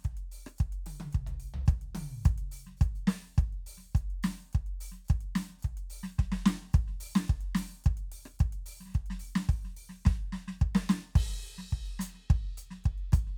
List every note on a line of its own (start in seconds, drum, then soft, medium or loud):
0.01 closed hi-hat soft
0.01 hi-hat pedal soft
0.05 kick medium
0.11 snare soft
0.15 snare soft
0.15 closed hi-hat soft
0.32 open hi-hat medium
0.47 cross-stick medium
0.56 kick medium
0.56 closed hi-hat medium
0.56 hi-hat pedal soft
0.72 closed hi-hat soft
0.86 open hi-hat medium
0.86 high tom medium
1.00 high tom loud
1.11 kick medium
1.11 closed hi-hat soft
1.11 hi-hat pedal soft
1.27 closed hi-hat soft
1.27 floor tom medium
1.40 kick soft
1.40 open hi-hat medium
1.54 floor tom loud
1.66 kick loud
1.66 closed hi-hat soft
1.66 hi-hat pedal soft
1.81 closed hi-hat soft
1.95 open hi-hat medium
1.95 high tom loud
2.22 kick loud
2.22 closed hi-hat medium
2.22 hi-hat pedal soft
2.38 closed hi-hat soft
2.52 open hi-hat medium
2.67 snare soft
2.77 hi-hat pedal soft
2.81 kick loud
2.81 closed hi-hat medium
2.95 closed hi-hat soft
3.07 open hi-hat medium
3.07 snare loud
3.22 snare soft
3.25 snare soft
3.35 kick loud
3.35 closed hi-hat soft
3.35 hi-hat pedal soft
3.53 closed hi-hat soft
3.67 open hi-hat medium
3.78 snare soft
3.92 kick loud
3.92 snare soft
3.92 hi-hat pedal soft
3.97 closed hi-hat medium
4.10 closed hi-hat soft
4.23 open hi-hat medium
4.23 snare loud
4.38 snare soft
4.51 closed hi-hat soft
4.51 hi-hat pedal soft
4.55 kick medium
4.66 closed hi-hat soft
4.81 open hi-hat medium
4.92 snare soft
5.05 hi-hat pedal soft
5.09 kick loud
5.09 closed hi-hat medium
5.21 closed hi-hat soft
5.36 open hi-hat medium
5.36 snare medium
5.50 snare soft
5.59 snare soft
5.59 closed hi-hat medium
5.59 hi-hat pedal soft
5.65 kick medium
5.77 closed hi-hat soft
5.90 open hi-hat medium
5.90 kick soft
6.03 snare medium
6.16 kick medium
6.16 snare medium
6.16 hi-hat pedal soft
6.32 snare loud
6.45 kick soft
6.45 snare loud
6.62 snare soft
6.72 kick loud
6.72 closed hi-hat medium
6.72 hi-hat pedal soft
6.88 snare soft
7.00 open hi-hat loud
7.16 snare loud
7.24 hi-hat pedal soft
7.28 kick loud
7.28 closed hi-hat soft
7.41 closed hi-hat soft
7.55 open hi-hat medium
7.55 snare loud
7.69 snare soft
7.80 hi-hat pedal soft
7.84 kick loud
7.84 closed hi-hat medium
7.97 closed hi-hat soft
8.12 open hi-hat medium
8.26 cross-stick medium
8.34 hi-hat pedal soft
8.39 kick loud
8.39 closed hi-hat medium
8.53 closed hi-hat soft
8.66 open hi-hat medium
8.81 snare soft
8.86 snare soft
8.89 snare soft
8.89 hi-hat pedal soft
8.92 snare soft
8.94 kick medium
8.94 snare soft
8.94 closed hi-hat soft
9.06 closed hi-hat soft
9.10 snare medium
9.19 open hi-hat medium
9.19 kick soft
9.36 snare loud
9.49 kick loud
9.49 open hi-hat soft
9.65 snare soft
9.77 open hi-hat medium
9.89 snare soft
10.05 kick loud
10.05 snare medium
10.05 hi-hat pedal soft
10.33 snare medium
10.48 snare medium
10.59 kick loud
10.59 hi-hat pedal soft
10.75 snare loud
10.89 snare loud
11.16 kick loud
11.16 crash loud
11.30 snare soft
11.46 closed hi-hat soft
11.58 snare medium
11.71 kick medium
11.71 closed hi-hat soft
11.86 closed hi-hat soft
11.99 closed hi-hat loud
11.99 snare medium
12.14 snare soft
12.30 kick loud
12.30 closed hi-hat soft
12.42 closed hi-hat soft
12.58 closed hi-hat medium
12.71 snare medium
12.84 kick medium
12.84 closed hi-hat soft
12.98 closed hi-hat soft
13.13 closed hi-hat medium
13.13 kick loud
13.13 cross-stick medium
13.27 snare soft